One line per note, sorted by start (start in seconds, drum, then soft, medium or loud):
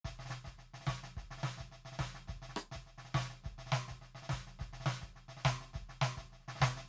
0.03 kick soft
0.03 snare medium
0.09 kick soft
0.19 snare soft
0.25 snare soft
0.25 hi-hat pedal medium
0.30 snare medium
0.44 kick soft
0.44 snare soft
0.58 snare soft
0.74 snare soft
0.80 snare soft
0.85 kick soft
0.85 snare medium
0.85 hi-hat pedal medium
1.03 snare soft
1.17 kick soft
1.17 snare soft
1.23 kick soft
1.31 snare soft
1.37 snare soft
1.42 snare medium
1.42 hi-hat pedal medium
1.58 kick soft
1.58 snare soft
1.72 snare soft
1.85 snare soft
1.92 snare soft
1.98 kick soft
1.98 snare medium
1.98 hi-hat pedal medium
2.14 snare soft
2.28 kick soft
2.28 snare soft
2.36 kick soft
2.42 snare soft
2.49 snare soft
2.56 cross-stick medium
2.56 hi-hat pedal medium
2.71 snare medium
2.75 kick soft
2.86 snare soft
2.98 snare soft
3.04 snare soft
3.10 snare soft
3.14 kick soft
3.14 hi-hat pedal medium
3.29 snare soft
3.44 kick soft
3.44 snare soft
3.51 kick soft
3.58 snare soft
3.66 snare soft
3.72 snare medium
3.72 hi-hat pedal medium
3.88 kick soft
3.88 snare soft
4.01 snare soft
4.15 snare soft
4.22 snare soft
4.29 kick soft
4.29 snare medium
4.29 hi-hat pedal medium
4.41 kick soft
4.47 snare soft
4.59 kick soft
4.59 snare soft
4.68 kick soft
4.73 snare soft
4.80 snare soft
4.86 snare loud
4.86 hi-hat pedal medium
5.01 kick soft
5.01 snare soft
5.16 snare soft
5.28 snare soft
5.37 snare soft
5.44 kick soft
5.44 snare loud
5.44 hi-hat pedal medium
5.60 snare soft
5.73 kick soft
5.73 snare soft
5.82 kick soft
5.89 snare soft
6.01 snare medium
6.01 hi-hat pedal medium
6.17 kick soft
6.17 snare soft
6.32 snare soft
6.40 snare soft
6.48 snare medium
6.55 snare soft
6.61 kick soft
6.61 snare loud
6.61 hi-hat pedal medium
6.76 snare soft